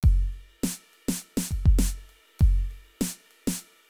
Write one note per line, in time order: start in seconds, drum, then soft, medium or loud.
0.03 kick loud
0.03 ride loud
0.33 ride soft
0.63 snare loud
0.63 ride loud
0.93 ride medium
1.08 snare loud
1.22 ride medium
1.37 snare loud
1.51 kick medium
1.51 ride loud
1.66 kick loud
1.79 snare loud
1.79 ride loud
2.09 ride medium
2.39 kick loud
2.39 ride loud
2.71 ride medium
3.01 snare loud
3.01 ride loud
3.31 ride medium
3.47 snare loud
3.59 ride loud